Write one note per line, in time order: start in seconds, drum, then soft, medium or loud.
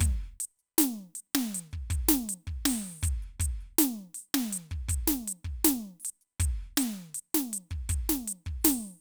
0.01 closed hi-hat loud
0.01 kick medium
0.40 closed hi-hat loud
0.59 closed hi-hat soft
0.78 closed hi-hat loud
0.78 snare loud
1.15 closed hi-hat loud
1.35 snare loud
1.55 closed hi-hat loud
1.72 kick soft
1.72 closed hi-hat soft
1.90 closed hi-hat loud
1.90 kick medium
2.09 snare loud
2.29 closed hi-hat loud
2.47 kick soft
2.66 open hi-hat loud
2.66 snare loud
3.02 closed hi-hat loud
3.02 kick medium
3.02 hi-hat pedal medium
3.23 closed hi-hat soft
3.40 closed hi-hat loud
3.40 kick medium
3.61 closed hi-hat soft
3.79 closed hi-hat loud
3.79 snare loud
4.15 open hi-hat medium
4.35 snare loud
4.53 closed hi-hat loud
4.71 kick soft
4.71 closed hi-hat soft
4.89 closed hi-hat loud
4.89 kick medium
5.08 snare loud
5.28 closed hi-hat loud
5.45 kick soft
5.45 closed hi-hat soft
5.65 open hi-hat loud
5.65 snare loud
6.00 hi-hat pedal medium
6.05 closed hi-hat loud
6.21 closed hi-hat soft
6.40 closed hi-hat loud
6.40 kick medium
6.59 closed hi-hat soft
6.77 closed hi-hat loud
6.77 snare loud
6.77 hi-hat pedal soft
7.15 closed hi-hat loud
7.35 snare loud
7.53 closed hi-hat loud
7.71 kick soft
7.71 closed hi-hat soft
7.90 closed hi-hat loud
7.90 kick medium
8.10 snare medium
8.28 closed hi-hat loud
8.46 kick soft
8.46 closed hi-hat soft
8.62 open hi-hat loud
8.62 snare loud
8.62 hi-hat pedal soft